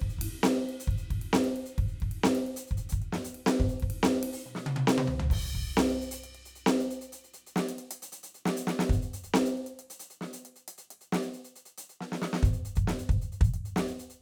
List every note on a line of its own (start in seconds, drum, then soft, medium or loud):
0.01 kick medium
0.01 ride soft
0.10 closed hi-hat soft
0.19 kick medium
0.19 ride loud
0.43 snare loud
0.43 ride medium
0.69 ride soft
0.80 closed hi-hat loud
0.88 kick loud
0.88 ride soft
0.98 closed hi-hat soft
1.11 kick medium
1.11 ride medium
1.22 ride medium
1.33 snare loud
1.44 ride soft
1.56 ride soft
1.66 closed hi-hat medium
1.78 kick loud
1.78 ride soft
1.88 closed hi-hat soft
2.00 kick medium
2.00 ride soft
2.12 ride medium
2.24 snare loud
2.35 ride medium
2.47 ride soft
2.56 closed hi-hat loud
2.67 closed hi-hat medium
2.67 kick medium
2.77 closed hi-hat medium
2.89 closed hi-hat loud
2.89 kick medium
3.02 closed hi-hat soft
3.13 snare loud
3.25 closed hi-hat loud
3.35 ride medium
3.46 snare loud
3.60 kick loud
3.69 closed hi-hat medium
3.80 kick medium
3.80 ride soft
3.90 ride medium
4.03 snare loud
4.23 ride loud
4.33 open hi-hat loud
4.46 hi-hat pedal soft
4.46 high tom soft
4.55 snare medium
4.66 high tom loud
4.76 high tom loud
4.87 snare loud
4.98 high tom loud
5.08 floor tom loud
5.20 floor tom loud
5.30 kick medium
5.30 crash loud
5.55 kick medium
5.77 snare loud
5.90 closed hi-hat soft
6.02 closed hi-hat medium
6.11 closed hi-hat loud
6.24 closed hi-hat medium
6.35 closed hi-hat soft
6.46 closed hi-hat medium
6.56 closed hi-hat medium
6.66 snare loud
6.80 closed hi-hat medium
6.91 closed hi-hat medium
7.01 closed hi-hat medium
7.12 closed hi-hat medium
7.24 closed hi-hat soft
7.34 closed hi-hat medium
7.47 closed hi-hat medium
7.56 snare loud
7.69 closed hi-hat medium
7.79 closed hi-hat medium
7.91 closed hi-hat loud
8.02 closed hi-hat loud
8.12 closed hi-hat loud
8.23 closed hi-hat loud
8.35 closed hi-hat medium
8.46 snare loud
8.57 closed hi-hat loud
8.67 snare loud
8.79 snare loud
8.90 closed hi-hat medium
8.90 kick loud
9.02 closed hi-hat medium
9.14 closed hi-hat medium
9.24 closed hi-hat medium
9.34 snare loud
9.46 closed hi-hat medium
9.57 closed hi-hat soft
9.67 closed hi-hat medium
9.79 closed hi-hat medium
9.90 closed hi-hat loud
10.00 closed hi-hat loud
10.10 closed hi-hat medium
10.21 snare medium
10.33 closed hi-hat loud
10.45 closed hi-hat medium
10.56 closed hi-hat medium
10.68 closed hi-hat loud
10.78 closed hi-hat medium
10.91 closed hi-hat medium
11.01 closed hi-hat medium
11.13 snare loud
11.23 closed hi-hat soft
11.34 closed hi-hat medium
11.45 closed hi-hat medium
11.56 closed hi-hat medium
11.66 closed hi-hat medium
11.78 closed hi-hat loud
11.90 closed hi-hat medium
12.01 snare medium
12.12 snare medium
12.22 snare loud
12.33 snare loud
12.43 closed hi-hat medium
12.43 kick loud
12.54 closed hi-hat medium
12.65 closed hi-hat medium
12.76 closed hi-hat medium
12.76 kick loud
12.88 snare loud
12.99 closed hi-hat medium
13.09 kick loud
13.09 closed hi-hat soft
13.22 closed hi-hat medium
13.32 closed hi-hat soft
13.41 closed hi-hat medium
13.41 kick loud
13.54 closed hi-hat medium
13.65 closed hi-hat medium
13.76 snare loud
13.88 closed hi-hat medium
14.00 closed hi-hat medium
14.10 closed hi-hat medium